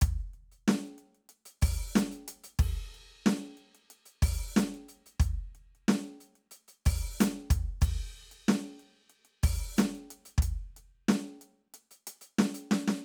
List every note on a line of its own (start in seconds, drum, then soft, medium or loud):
0.01 kick loud
0.01 closed hi-hat loud
0.20 closed hi-hat soft
0.34 closed hi-hat soft
0.52 closed hi-hat soft
0.68 snare loud
0.84 closed hi-hat soft
0.98 closed hi-hat soft
1.15 closed hi-hat soft
1.29 closed hi-hat medium
1.46 closed hi-hat medium
1.62 open hi-hat loud
1.62 kick loud
1.96 snare loud
1.96 hi-hat pedal loud
2.12 closed hi-hat medium
2.28 closed hi-hat loud
2.44 closed hi-hat medium
2.59 kick loud
2.59 crash loud
2.94 closed hi-hat soft
3.09 closed hi-hat soft
3.26 snare loud
3.43 closed hi-hat soft
3.57 closed hi-hat soft
3.75 closed hi-hat soft
3.90 closed hi-hat medium
4.06 closed hi-hat medium
4.22 open hi-hat loud
4.22 kick loud
4.56 snare loud
4.56 hi-hat pedal loud
4.74 closed hi-hat soft
4.89 closed hi-hat medium
5.06 closed hi-hat soft
5.20 closed hi-hat medium
5.20 kick loud
5.55 closed hi-hat soft
5.75 closed hi-hat soft
5.88 snare loud
6.04 closed hi-hat soft
6.20 closed hi-hat soft
6.35 closed hi-hat soft
6.51 closed hi-hat medium
6.68 closed hi-hat soft
6.85 open hi-hat loud
6.85 kick loud
7.20 closed hi-hat loud
7.20 snare loud
7.20 hi-hat pedal loud
7.50 kick loud
7.50 closed hi-hat loud
7.81 kick loud
7.81 hi-hat pedal loud
7.81 crash medium
8.17 closed hi-hat soft
8.31 closed hi-hat medium
8.48 snare loud
8.64 closed hi-hat soft
8.79 closed hi-hat soft
8.95 closed hi-hat soft
9.10 closed hi-hat soft
9.25 closed hi-hat soft
9.43 open hi-hat loud
9.43 kick loud
9.77 snare loud
9.77 hi-hat pedal loud
9.95 closed hi-hat soft
10.10 closed hi-hat medium
10.25 closed hi-hat medium
10.38 kick loud
10.42 closed hi-hat loud
10.76 closed hi-hat medium
11.08 snare loud
11.41 closed hi-hat medium
11.74 closed hi-hat medium
11.91 closed hi-hat medium
12.07 closed hi-hat loud
12.21 closed hi-hat medium
12.39 snare loud
12.54 closed hi-hat medium
12.71 snare loud
12.88 snare loud